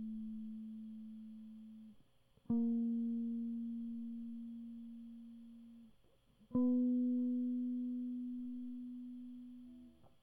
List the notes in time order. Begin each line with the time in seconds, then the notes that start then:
2.51 A#3
6.56 B3